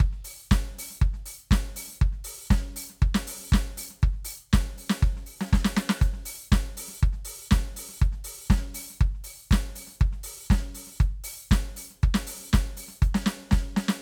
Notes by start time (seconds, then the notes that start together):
0.01 kick, closed hi-hat
0.13 snare
0.25 open hi-hat
0.48 hi-hat pedal
0.52 kick, snare, closed hi-hat
0.79 open hi-hat
0.91 snare
0.98 hi-hat pedal
1.02 kick, closed hi-hat
1.14 snare
1.27 open hi-hat
1.48 kick, hi-hat pedal
1.53 snare, closed hi-hat
1.68 snare
1.77 open hi-hat
1.89 snare
1.92 snare
1.98 hi-hat pedal
2.02 kick, closed hi-hat
2.13 snare
2.25 open hi-hat
2.48 kick, snare, closed hi-hat, hi-hat pedal
2.67 snare
2.72 snare
2.77 open hi-hat
2.90 snare
2.99 hi-hat pedal
3.03 kick, closed hi-hat
3.15 snare
3.28 open hi-hat
3.51 kick, snare, hi-hat pedal
3.55 closed hi-hat
3.78 open hi-hat
3.91 snare
3.99 snare, hi-hat pedal
4.03 kick, closed hi-hat
4.14 snare
4.26 open hi-hat
4.50 closed hi-hat, kick, snare, hi-hat pedal
4.61 snare
4.79 open hi-hat
4.91 snare
5.00 kick, hi-hat pedal
5.05 closed hi-hat
5.17 snare
5.27 open hi-hat
5.42 snare
5.49 hi-hat pedal
5.54 kick, snare
5.66 snare
5.78 snare
5.90 snare
5.98 hi-hat pedal
6.02 closed hi-hat, kick
6.14 snare
6.26 open hi-hat
6.48 hi-hat pedal
6.53 kick, snare, closed hi-hat
6.78 open hi-hat
6.89 snare
6.99 hi-hat pedal
7.03 kick, closed hi-hat
7.13 snare
7.26 open hi-hat
7.46 hi-hat pedal
7.52 kick, snare, closed hi-hat
7.59 snare
7.77 open hi-hat
7.89 snare
7.99 kick, closed hi-hat, hi-hat pedal
8.13 snare
8.25 open hi-hat
8.48 kick, snare, closed hi-hat, hi-hat pedal
8.59 snare
8.75 open hi-hat
8.91 snare
8.98 kick, closed hi-hat, hi-hat pedal
9.15 snare
9.25 open hi-hat
9.48 closed hi-hat, kick, hi-hat pedal
9.53 snare
9.69 snare
9.76 open hi-hat
9.88 snare
9.96 hi-hat pedal
10.01 kick, closed hi-hat
10.13 snare
10.24 open hi-hat
10.48 kick, hi-hat pedal
10.52 snare, closed hi-hat
10.59 snare
10.76 open hi-hat
10.88 snare
10.98 kick, closed hi-hat, hi-hat pedal
11.25 open hi-hat
11.49 kick, snare, hi-hat pedal
11.54 closed hi-hat
11.77 open hi-hat
11.91 snare
12.01 kick, closed hi-hat, hi-hat pedal
12.15 snare
12.28 open hi-hat
12.50 hi-hat pedal
12.54 closed hi-hat, kick, snare
12.78 open hi-hat
12.89 snare
12.97 hi-hat pedal
13.03 closed hi-hat, kick
13.15 snare
13.27 snare
13.50 kick, snare, hi-hat pedal
13.77 snare
13.89 snare